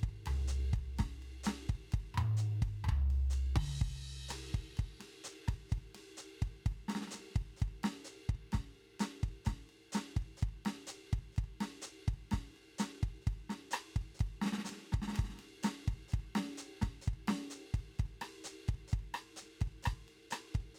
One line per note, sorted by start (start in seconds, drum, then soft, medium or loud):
0.01 kick soft
0.01 ride soft
0.09 kick soft
0.26 floor tom medium
0.26 ride medium
0.48 hi-hat pedal medium
0.53 ride soft
0.74 kick soft
0.74 ride soft
0.79 kick soft
0.97 kick soft
0.97 snare medium
0.97 hi-hat pedal soft
0.97 ride medium
1.06 kick soft
1.23 ride soft
1.44 snare medium
1.44 hi-hat pedal medium
1.44 ride medium
1.70 kick soft
1.70 ride soft
1.75 kick soft
1.90 kick soft
1.90 hi-hat pedal soft
1.90 ride medium
2.00 kick soft
2.15 mid tom medium
2.18 mid tom loud
2.38 hi-hat pedal medium
2.38 ride soft
2.63 kick soft
2.63 ride medium
2.68 kick soft
2.85 floor tom loud
2.89 kick soft
2.89 floor tom loud
3.11 ride soft
3.31 hi-hat pedal medium
3.31 ride bell soft
3.56 kick soft
3.56 high tom loud
3.56 crash loud
3.64 kick soft
3.82 kick soft
3.82 ride soft
3.88 kick soft
3.99 snare soft
4.09 ride soft
4.29 cross-stick soft
4.29 snare soft
4.29 hi-hat pedal medium
4.29 ride medium
4.55 kick soft
4.55 ride soft
4.60 kick soft
4.78 kick soft
4.78 ride soft
4.85 kick soft
5.00 snare soft
5.00 ride medium
5.25 hi-hat pedal medium
5.25 ride soft
5.48 kick soft
5.48 cross-stick soft
5.48 snare soft
5.48 ride medium
5.54 kick soft
5.64 snare soft
5.70 kick soft
5.70 hi-hat pedal soft
5.70 ride soft
5.78 kick soft
5.95 snare soft
5.95 ride medium
6.18 hi-hat pedal medium
6.18 ride soft
6.42 kick soft
6.42 ride soft
6.48 kick soft
6.66 kick soft
6.66 ride soft
6.72 kick soft
6.89 snare medium
6.89 ride medium
6.96 snare medium
7.01 snare soft
7.08 snare soft
7.08 hi-hat pedal medium
7.15 snare soft
7.15 ride soft
7.20 snare soft
7.25 snare soft
7.31 snare soft
7.35 kick soft
7.35 snare soft
7.35 ride soft
7.39 kick soft
7.39 snare soft
7.57 hi-hat pedal soft
7.57 ride soft
7.62 kick soft
7.68 kick soft
7.84 snare medium
7.84 ride medium
8.05 hi-hat pedal medium
8.05 ride soft
8.30 kick soft
8.30 ride soft
8.35 kick soft
8.52 kick soft
8.52 snare medium
8.52 hi-hat pedal soft
8.52 ride medium
8.60 kick soft
8.75 ride soft
9.00 snare medium
9.00 hi-hat pedal medium
9.00 ride medium
9.24 kick soft
9.24 ride soft
9.29 kick soft
9.45 kick soft
9.45 snare medium
9.45 hi-hat pedal medium
9.45 ride medium
9.53 kick soft
9.70 ride soft
9.93 snare medium
9.93 hi-hat pedal medium
9.93 ride medium
10.17 kick soft
10.17 ride soft
10.22 kick soft
10.38 hi-hat pedal soft
10.42 kick soft
10.42 ride soft
10.49 kick soft
10.66 snare medium
10.66 ride medium
10.88 hi-hat pedal medium
10.88 ride soft
11.13 kick soft
11.13 ride soft
11.19 kick soft
11.33 hi-hat pedal soft
11.37 kick soft
11.37 ride soft
11.44 kick soft
11.61 snare medium
11.61 ride medium
11.82 hi-hat pedal medium
11.82 ride soft
12.08 kick soft
12.08 ride soft
12.14 kick soft
12.32 kick soft
12.32 snare medium
12.32 ride medium
12.39 kick soft
12.57 ride soft
12.79 snare medium
12.79 hi-hat pedal medium
12.79 ride medium
13.03 kick soft
13.03 ride soft
13.08 kick soft
13.22 hi-hat pedal soft
13.27 kick soft
13.27 ride soft
13.33 kick soft
13.50 snare medium
13.50 ride medium
13.71 cross-stick medium
13.71 hi-hat pedal medium
13.71 ride medium
13.96 kick soft
13.96 ride soft
14.02 kick soft
14.15 hi-hat pedal soft
14.20 kick soft
14.20 ride medium
14.27 kick soft
14.42 snare medium
14.46 snare medium
14.53 snare medium
14.58 snare soft
14.65 snare soft
14.65 hi-hat pedal medium
14.70 snare soft
14.70 ride medium
14.78 snare soft
14.83 snare soft
14.93 kick soft
14.93 snare soft
15.00 kick soft
15.00 snare medium
15.08 snare medium
15.13 snare medium
15.13 ride medium
15.18 kick soft
15.18 snare soft
15.24 kick soft
15.24 snare soft
15.30 snare soft
15.35 snare soft
15.39 snare soft
15.39 ride medium
15.42 snare soft
15.63 snare medium
15.63 hi-hat pedal medium
15.63 ride medium
15.88 kick soft
15.88 snare soft
15.88 ride soft
15.94 kick soft
15.94 snare soft
16.09 hi-hat pedal soft
16.13 kick soft
16.13 ride soft
16.20 kick soft
16.36 snare medium
16.36 ride medium
16.58 hi-hat pedal medium
16.58 ride soft
16.82 kick soft
16.82 snare soft
16.82 ride soft
16.89 kick soft
17.02 hi-hat pedal medium
17.07 kick soft
17.07 ride soft
17.13 kick soft
17.28 snare medium
17.28 ride medium
17.51 hi-hat pedal medium
17.51 ride soft
17.75 kick soft
17.75 ride soft
17.80 kick soft
17.94 hi-hat pedal soft
18.00 kick soft
18.00 ride soft
18.06 kick soft
18.22 cross-stick medium
18.22 ride medium
18.45 hi-hat pedal medium
18.45 ride soft
18.69 kick soft
18.69 ride soft
18.75 kick soft
18.88 hi-hat pedal soft
18.92 kick soft
18.92 ride soft
18.99 kick soft
19.15 cross-stick medium
19.15 ride medium
19.37 hi-hat pedal medium
19.37 ride soft
19.43 snare soft
19.61 kick soft
19.61 ride soft
19.67 kick soft
19.83 cross-stick medium
19.83 hi-hat pedal soft
19.83 ride medium
19.88 kick soft
19.93 kick soft
20.09 ride soft
20.31 cross-stick medium
20.31 hi-hat pedal medium
20.31 ride medium
20.55 kick soft
20.55 ride soft
20.61 kick soft
20.75 hi-hat pedal soft